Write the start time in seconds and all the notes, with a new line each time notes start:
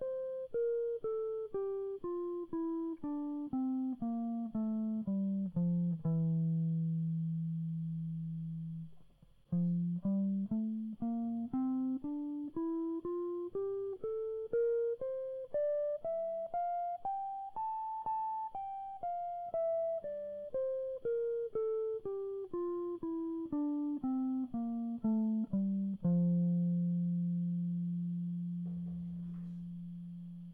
0.01 C5
0.54 A#4
1.04 A4
1.54 G4
2.04 F4
2.53 E4
3.04 D4
3.53 C4
4.02 A#3
4.55 A3
5.08 G3
5.57 F3
6.06 E3
9.55 F3
10.06 G3
10.52 A3
11.02 A#3
11.54 C4
12.04 D4
12.56 E4
13.05 F4
13.55 G4
14.04 A4
14.53 A#4
15.01 C5
15.54 D5
16.04 E5
16.54 F5
17.05 G5
17.56 A5
18.06 A5
18.55 G5
19.03 F5
19.54 E5
20.04 D5
20.54 C5
21.05 A#4
21.55 A4
22.05 G4
22.54 F4
23.03 E4
23.53 D4
24.04 C4
24.54 A#3
25.05 A3
25.54 G3
26.05 F3